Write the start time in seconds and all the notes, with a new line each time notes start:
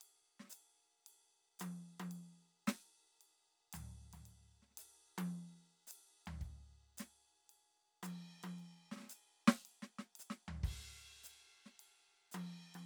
0.01 ride
0.40 snare
0.43 snare
0.46 snare
0.50 hi-hat pedal, ride
1.07 ride
1.59 hi-hat pedal, high tom, ride
2.00 high tom, ride
2.11 ride
2.67 snare, hi-hat pedal, ride
3.21 ride
3.73 floor tom, hi-hat pedal, ride
4.13 floor tom, ride
4.26 ride
4.62 snare
4.68 snare
4.71 snare
4.78 hi-hat pedal, ride
5.18 high tom, ride
5.87 hi-hat pedal
5.91 ride
6.26 floor tom, ride
6.41 kick, ride
6.98 snare, hi-hat pedal, ride
7.50 ride
8.03 hi-hat pedal, high tom, ride
8.43 high tom, ride
8.59 ride
8.92 snare
8.97 snare
9.00 snare
9.03 snare
9.06 snare, hi-hat pedal, ride
9.48 snare
9.65 ride
9.83 snare
9.99 snare
10.16 hi-hat pedal, ride
10.30 snare
10.48 floor tom
10.64 kick, crash
11.24 hi-hat pedal, ride
11.66 snare
11.80 ride
12.32 hi-hat pedal, high tom, ride
12.75 high tom, ride